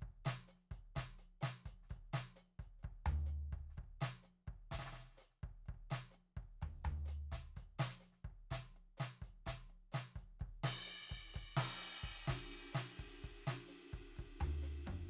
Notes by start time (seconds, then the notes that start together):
0.01 kick, closed hi-hat
0.08 kick
0.25 closed hi-hat, snare
0.48 hi-hat pedal
0.55 snare
0.71 closed hi-hat, kick
0.95 open hi-hat, kick, snare
1.02 kick
1.18 closed hi-hat
1.41 open hi-hat, snare, hi-hat pedal
1.65 closed hi-hat, kick
1.83 snare
1.90 closed hi-hat, kick
1.96 kick
2.13 closed hi-hat, snare
2.36 closed hi-hat, hi-hat pedal
2.59 closed hi-hat, kick
2.64 kick
2.78 hi-hat pedal
2.83 kick, closed hi-hat
3.06 closed hi-hat, floor tom
3.26 closed hi-hat, hi-hat pedal
3.52 kick, closed hi-hat
3.58 kick
3.69 snare
3.77 kick, closed hi-hat
3.83 kick
4.01 closed hi-hat, snare
4.23 closed hi-hat, hi-hat pedal
4.47 kick, closed hi-hat
4.53 kick
4.71 open hi-hat, kick, snare
4.79 kick, snare
4.86 snare
4.92 snare
4.97 snare, closed hi-hat
5.04 snare
5.14 snare, hi-hat pedal
5.19 closed hi-hat, snare
5.23 snare
5.30 snare
5.43 kick, closed hi-hat
5.49 kick
5.66 kick, closed hi-hat
5.74 kick
5.90 closed hi-hat, snare
6.11 closed hi-hat, hi-hat pedal
6.37 kick, closed hi-hat
6.42 kick
6.62 kick, closed hi-hat, floor tom
6.84 closed hi-hat, floor tom
7.05 closed hi-hat, hi-hat pedal
7.31 closed hi-hat, kick, snare
7.38 kick
7.56 closed hi-hat, kick
7.62 kick
7.79 closed hi-hat, snare
8.00 closed hi-hat, hi-hat pedal
8.12 snare
8.24 kick, closed hi-hat
8.30 kick
8.50 closed hi-hat, kick, snare
8.57 kick
8.76 closed hi-hat
8.97 closed hi-hat, snare, hi-hat pedal
9.22 closed hi-hat, kick
9.46 closed hi-hat, kick, snare
9.53 kick
9.70 closed hi-hat
9.92 closed hi-hat, snare, hi-hat pedal
10.16 closed hi-hat, kick
10.21 kick
10.40 kick, closed hi-hat
10.63 snare, crash
10.86 closed hi-hat, hi-hat pedal
11.01 snare
11.09 closed hi-hat, kick
11.17 kick
11.34 closed hi-hat, kick
11.41 kick
11.57 snare, crash
11.77 closed hi-hat, hi-hat pedal
12.03 closed hi-hat, kick
12.09 kick
12.27 kick, snare, ride
12.35 kick
12.52 ride
12.73 snare, hi-hat pedal, ride
12.99 kick, ride
13.04 kick
13.22 kick, ride
13.29 kick
13.47 snare, ride
13.68 hi-hat pedal, ride
13.93 kick, ride
13.99 kick
14.17 kick, ride
14.24 kick
14.40 floor tom, ride
14.63 hi-hat pedal, ride
14.87 kick, mid tom, ride